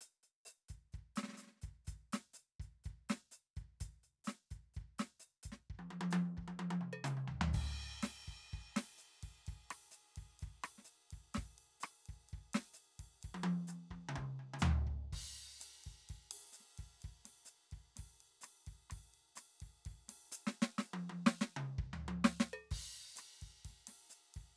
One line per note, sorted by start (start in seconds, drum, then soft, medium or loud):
0.03 closed hi-hat medium
0.23 closed hi-hat soft
0.45 open hi-hat medium
0.45 hi-hat pedal medium
0.68 closed hi-hat soft
0.68 kick soft
0.92 kick soft
0.92 hi-hat pedal soft
0.99 kick soft
1.16 closed hi-hat medium
1.16 snare medium
1.23 snare soft
1.28 snare soft
1.33 snare soft
1.37 closed hi-hat soft
1.37 snare soft
1.37 hi-hat pedal medium
1.42 snare soft
1.47 snare soft
1.52 snare soft
1.56 snare soft
1.61 closed hi-hat soft
1.61 kick soft
1.61 snare soft
1.63 snare soft
1.67 kick soft
1.67 snare soft
1.73 snare soft
1.85 closed hi-hat soft
1.85 kick soft
1.85 hi-hat pedal soft
1.93 kick soft
2.12 closed hi-hat medium
2.12 snare medium
2.33 hi-hat pedal medium
2.38 closed hi-hat soft
2.60 closed hi-hat soft
2.60 kick soft
2.65 kick soft
2.84 closed hi-hat soft
2.84 kick soft
2.91 kick soft
3.09 closed hi-hat medium
3.09 snare medium
3.31 closed hi-hat soft
3.31 hi-hat pedal medium
3.56 closed hi-hat soft
3.56 kick soft
3.62 kick soft
3.80 closed hi-hat soft
3.80 kick soft
3.86 kick soft
4.03 closed hi-hat soft
4.24 snare medium
4.24 hi-hat pedal medium
4.28 closed hi-hat soft
4.50 closed hi-hat soft
4.50 kick soft
4.56 kick soft
4.74 open hi-hat soft
4.74 kick soft
4.81 kick soft
4.98 closed hi-hat soft
4.98 snare medium
5.19 hi-hat pedal medium
5.43 closed hi-hat soft
5.43 kick soft
5.52 snare soft
5.70 kick soft
5.75 kick soft
5.79 high tom soft
5.90 high tom medium
6.01 high tom medium
6.11 hi-hat pedal medium
6.11 high tom loud
6.25 high tom soft
6.37 kick soft
6.37 high tom soft
6.43 kick soft
6.48 high tom medium
6.59 high tom medium
6.70 high tom medium
6.81 mid tom soft
6.93 percussion medium
7.04 hi-hat pedal medium
7.04 mid tom loud
7.17 mid tom soft
7.27 kick soft
7.27 floor tom soft
7.41 floor tom loud
7.53 kick soft
7.53 hi-hat pedal soft
7.53 ride medium
7.61 kick soft
8.03 snare medium
8.03 hi-hat pedal medium
8.03 ride medium
8.28 kick soft
8.52 kick soft
8.52 hi-hat pedal soft
8.58 kick soft
8.76 snare medium
8.76 ride medium
8.98 hi-hat pedal medium
8.98 ride soft
9.23 kick soft
9.23 ride soft
9.46 kick soft
9.46 hi-hat pedal soft
9.46 ride soft
9.53 kick soft
9.70 cross-stick medium
9.70 ride medium
9.91 hi-hat pedal medium
9.91 ride soft
10.16 kick soft
10.16 ride soft
10.22 kick soft
10.39 kick soft
10.39 hi-hat pedal soft
10.39 ride soft
10.47 kick soft
10.64 cross-stick medium
10.64 ride medium
10.78 snare soft
10.84 hi-hat pedal medium
10.84 ride soft
11.11 kick soft
11.11 ride soft
11.33 snare medium
11.33 hi-hat pedal soft
11.33 ride medium
11.38 kick soft
11.43 kick soft
11.58 ride soft
11.80 cross-stick medium
11.80 hi-hat pedal medium
11.80 ride medium
12.06 kick soft
12.06 ride soft
12.28 hi-hat pedal soft
12.28 ride soft
12.33 kick soft
12.38 kick soft
12.53 snare medium
12.53 ride medium
12.73 hi-hat pedal medium
12.73 ride soft
12.99 kick soft
12.99 ride soft
13.20 kick soft
13.20 hi-hat pedal soft
13.20 ride soft
13.34 high tom medium
13.43 high tom loud
13.67 hi-hat pedal medium
13.67 high tom soft
13.90 kick soft
13.90 high tom soft
14.09 mid tom medium
14.16 kick soft
14.16 mid tom medium
14.39 mid tom soft
14.54 mid tom medium
14.59 floor tom loud
14.59 hi-hat pedal medium
14.87 kick soft
15.12 kick soft
15.12 crash medium
15.18 kick soft
15.60 hi-hat pedal medium
15.60 ride medium
15.84 kick soft
15.84 ride soft
16.09 kick soft
16.09 ride soft
16.31 ride loud
16.52 hi-hat pedal medium
16.52 ride soft
16.60 snare soft
16.78 kick soft
16.78 ride soft
17.00 hi-hat pedal soft
17.00 ride soft
17.04 kick soft
17.25 snare soft
17.25 ride medium
17.45 hi-hat pedal medium
17.45 ride soft
17.71 kick soft
17.71 ride soft
17.96 kick soft
17.96 snare soft
17.96 ride medium
18.20 ride soft
18.41 cross-stick soft
18.41 snare soft
18.41 hi-hat pedal medium
18.41 ride medium
18.67 kick soft
18.67 ride soft
18.89 kick soft
18.89 cross-stick soft
18.89 snare soft
18.89 ride medium
18.97 kick soft
19.14 ride soft
19.35 cross-stick soft
19.35 snare soft
19.35 hi-hat pedal medium
19.35 ride medium
19.60 kick soft
19.60 ride soft
19.85 kick soft
19.85 ride soft
19.91 kick soft
20.08 snare soft
20.08 ride medium
20.32 hi-hat pedal loud
20.32 ride medium
20.47 snare medium
20.62 snare medium
20.78 snare medium
20.78 hi-hat pedal soft
20.93 high tom medium
21.09 high tom medium
21.26 snare loud
21.41 snare medium
21.56 mid tom medium
21.78 kick soft
21.85 kick soft
21.93 floor tom medium
22.08 high tom medium
22.24 snare loud
22.40 snare medium
22.53 percussion medium
22.71 kick soft
22.71 crash medium
23.16 cross-stick soft
23.16 hi-hat pedal medium
23.16 ride medium
23.41 kick soft
23.41 ride soft
23.65 kick soft
23.65 ride soft
23.69 snare soft
23.87 snare soft
23.87 ride medium
24.10 hi-hat pedal medium
24.10 ride soft
24.34 kick soft
24.34 ride soft